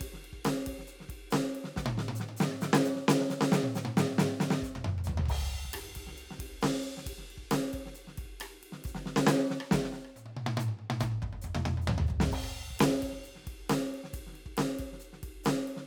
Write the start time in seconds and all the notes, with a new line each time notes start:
0.01 kick, hi-hat pedal, ride
0.08 kick
0.14 snare
0.22 snare, ride
0.33 kick
0.39 kick
0.45 snare, hi-hat pedal, ride
0.67 kick, ride
0.74 kick
0.79 snare
0.88 hi-hat pedal, ride
1.01 snare
1.10 kick, ride
1.15 kick
1.31 snare, hi-hat pedal, ride
1.56 ride
1.65 snare
1.77 kick, snare, hi-hat pedal
1.85 kick, high tom
1.98 snare
2.09 high tom
2.16 hi-hat pedal
2.21 snare
2.29 high tom
2.37 snare, hi-hat pedal
2.52 cross-stick
2.62 snare, hi-hat pedal
2.74 snare
2.85 snare, hi-hat pedal
2.96 snare
3.09 snare, hi-hat pedal
3.21 snare
3.31 snare, hi-hat pedal
3.42 snare
3.53 snare, hi-hat pedal
3.64 high tom
3.76 snare, hi-hat pedal
3.86 high tom
3.98 snare, hi-hat pedal
4.08 high tom
4.19 snare, hi-hat pedal
4.31 cross-stick
4.41 snare, hi-hat pedal
4.51 snare
4.63 kick, hi-hat pedal
4.72 kick
4.76 mid tom
4.85 mid tom
4.99 mid tom
5.05 kick, floor tom, hi-hat pedal
5.12 kick
5.18 floor tom
5.26 kick, hi-hat pedal, crash, floor tom
5.42 kick
5.66 kick
5.74 cross-stick, hi-hat pedal, ride
5.96 kick, ride
6.03 kick
6.08 snare
6.17 hi-hat pedal, ride
6.31 snare
6.40 kick, ride
6.46 kick
6.62 snare, hi-hat pedal, ride
6.84 ride
6.98 snare
7.07 kick, hi-hat pedal, ride
7.13 kick
7.19 snare
7.26 snare
7.31 ride
7.38 kick
7.44 kick
7.51 snare, hi-hat pedal, ride
7.74 kick, ride
7.80 kick
7.86 snare
7.95 hi-hat pedal, ride
8.08 snare
8.18 kick, ride
8.26 kick
8.41 cross-stick, hi-hat pedal, ride
8.64 ride
8.73 snare
8.85 kick, hi-hat pedal, ride
8.93 kick, snare
9.06 snare
9.17 snare
9.27 snare, hi-hat pedal
9.39 snare
9.51 snare
9.61 cross-stick
9.72 kick, snare, hi-hat pedal
9.79 kick
9.85 snare
9.93 snare
10.05 cross-stick
10.17 hi-hat pedal, high tom
10.26 high tom
10.37 high tom
10.47 high tom
10.58 hi-hat pedal, high tom
10.69 high tom
10.79 high tom
10.91 high tom
11.01 kick, hi-hat pedal, high tom
11.08 kick, high tom
11.23 kick, mid tom
11.33 kick, mid tom
11.42 kick, hi-hat pedal, mid tom
11.56 mid tom
11.66 mid tom
11.78 mid tom
11.82 hi-hat pedal
11.88 floor tom
11.99 floor tom
12.07 kick, floor tom, hi-hat pedal
12.18 kick, snare
12.32 kick, hi-hat pedal, crash
12.44 kick, cross-stick
12.71 kick
12.76 kick, ride
12.81 snare, hi-hat pedal
12.90 snare
13.03 kick, ride
13.09 kick, snare
13.24 hi-hat pedal, ride
13.36 snare
13.44 kick, snare
13.48 ride
13.54 kick
13.70 snare, hi-hat pedal, ride
13.95 ride
14.04 snare
14.14 kick, hi-hat pedal, ride
14.21 kick
14.27 snare
14.33 snare, ride
14.46 kick
14.52 kick
14.58 snare, hi-hat pedal, ride
14.69 snare
14.79 kick, ride
14.87 kick
14.93 snare
15.00 hi-hat pedal, ride
15.13 snare
15.24 kick, ride
15.30 kick
15.44 snare, hi-hat pedal, ride
15.68 ride
15.77 snare